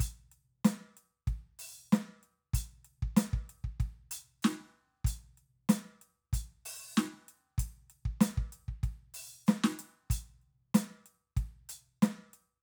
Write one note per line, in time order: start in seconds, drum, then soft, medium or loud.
0.01 closed hi-hat loud
0.01 kick medium
0.33 closed hi-hat soft
0.66 closed hi-hat loud
0.66 snare loud
0.98 closed hi-hat soft
1.28 kick medium
1.28 closed hi-hat soft
1.60 open hi-hat loud
1.94 snare loud
1.94 hi-hat pedal medium
1.94 open hi-hat medium
2.24 closed hi-hat soft
2.55 closed hi-hat loud
2.55 kick medium
2.86 closed hi-hat soft
3.03 kick medium
3.18 closed hi-hat loud
3.18 snare loud
3.34 kick medium
3.50 closed hi-hat soft
3.65 kick medium
3.81 kick medium
3.81 closed hi-hat soft
4.12 open hi-hat loud
4.43 snare loud
4.43 hi-hat pedal medium
5.06 closed hi-hat loud
5.06 kick medium
5.39 closed hi-hat soft
5.70 closed hi-hat loud
5.70 snare loud
6.03 closed hi-hat soft
6.34 closed hi-hat loud
6.34 kick medium
6.66 open hi-hat loud
6.97 snare loud
6.97 hi-hat pedal medium
7.29 closed hi-hat soft
7.59 kick medium
7.59 closed hi-hat medium
7.91 closed hi-hat soft
8.06 kick medium
8.22 closed hi-hat loud
8.22 snare loud
8.39 kick medium
8.53 closed hi-hat medium
8.69 kick soft
8.84 kick medium
8.84 closed hi-hat soft
9.15 open hi-hat loud
9.48 closed hi-hat medium
9.48 snare loud
9.48 hi-hat pedal medium
9.65 snare loud
9.80 closed hi-hat medium
10.11 closed hi-hat loud
10.11 kick medium
10.43 closed hi-hat soft
10.76 closed hi-hat loud
10.76 snare loud
11.07 closed hi-hat soft
11.38 kick medium
11.38 closed hi-hat soft
11.70 open hi-hat loud
12.03 open hi-hat loud
12.03 snare loud
12.03 hi-hat pedal medium
12.34 closed hi-hat soft